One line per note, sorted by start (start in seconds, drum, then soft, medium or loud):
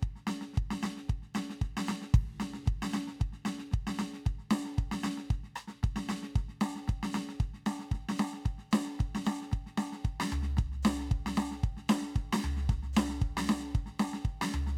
0.01 kick soft
0.01 snare soft
0.01 hi-hat pedal soft
0.16 snare soft
0.28 snare loud
0.28 hi-hat pedal medium
0.42 snare soft
0.54 snare soft
0.58 kick medium
0.71 snare loud
0.83 snare loud
0.83 hi-hat pedal medium
0.98 snare soft
1.09 kick medium
1.09 snare soft
1.23 snare soft
1.35 snare loud
1.35 hi-hat pedal medium
1.50 snare soft
1.62 kick soft
1.62 snare soft
1.78 snare loud
1.87 snare loud
1.87 hi-hat pedal medium
2.03 snare soft
2.11 kick loud
2.11 hi-hat pedal soft
2.17 ride medium
2.41 snare medium
2.41 hi-hat pedal medium
2.54 snare soft
2.65 kick medium
2.65 snare soft
2.65 hi-hat pedal soft
2.83 snare loud
2.93 snare loud
2.93 hi-hat pedal medium
3.08 snare soft
3.21 kick medium
3.21 snare soft
3.33 snare soft
3.46 snare loud
3.46 hi-hat pedal medium
3.59 snare soft
3.72 kick medium
3.72 snare soft
3.88 snare loud
3.99 snare medium
3.99 hi-hat pedal medium
4.14 snare soft
4.26 kick medium
4.26 snare soft
4.39 snare soft
4.51 snare loud
4.51 hi-hat pedal medium
4.65 snare soft
4.78 kick medium
4.78 snare soft
4.92 snare loud
5.04 snare loud
5.04 hi-hat pedal medium
5.18 snare soft
5.31 kick medium
5.31 snare soft
5.44 snare soft
5.56 cross-stick medium
5.56 hi-hat pedal medium
5.68 snare soft
5.84 kick medium
5.84 snare soft
5.97 snare loud
6.09 snare loud
6.09 hi-hat pedal medium
6.23 snare soft
6.36 kick medium
6.36 snare soft
6.49 snare soft
6.61 snare loud
6.61 hi-hat pedal medium
6.76 snare soft
6.88 kick medium
6.88 snare soft
7.04 snare loud
7.13 snare loud
7.13 hi-hat pedal medium
7.30 snare soft
7.41 kick medium
7.41 snare soft
7.54 snare soft
7.67 snare loud
7.67 hi-hat pedal medium
7.80 snare soft
7.92 kick soft
7.92 snare soft
8.09 snare loud
8.18 snare loud
8.18 hi-hat pedal medium
8.34 snare soft
8.46 kick medium
8.46 snare soft
8.59 snare soft
8.72 snare loud
8.72 hi-hat pedal medium
8.85 snare soft
9.00 kick medium
9.00 snare soft
9.16 snare medium
9.25 snare loud
9.25 hi-hat pedal medium
9.43 snare soft
9.52 kick medium
9.52 snare soft
9.67 snare soft
9.78 snare loud
9.78 hi-hat pedal medium
9.93 snare soft
10.05 kick medium
10.05 snare soft
10.21 snare loud
10.31 floor tom loud
10.31 hi-hat pedal medium
10.43 snare soft
10.58 kick medium
10.58 snare medium
10.73 snare soft
10.83 snare loud
10.83 hi-hat pedal medium
11.00 snare soft
11.12 kick medium
11.12 snare soft
11.27 snare loud
11.36 snare loud
11.36 hi-hat pedal medium
11.52 snare soft
11.64 kick medium
11.64 snare soft
11.78 snare soft
11.89 snare loud
11.89 hi-hat pedal medium
12.02 snare soft
12.16 kick medium
12.16 snare soft
12.33 snare loud
12.41 floor tom loud
12.41 hi-hat pedal medium
12.57 snare soft
12.70 kick medium
12.70 snare medium
12.83 snare soft
12.94 snare loud
12.94 hi-hat pedal medium
13.10 snare soft
13.22 kick medium
13.22 snare soft
13.38 snare loud
13.47 snare loud
13.47 hi-hat pedal medium
13.61 snare soft
13.75 kick medium
13.75 snare soft
13.87 snare soft
14.00 snare loud
14.00 hi-hat pedal medium
14.14 snare medium
14.26 kick medium
14.26 snare soft
14.42 snare loud
14.53 floor tom loud
14.53 hi-hat pedal medium
14.67 snare soft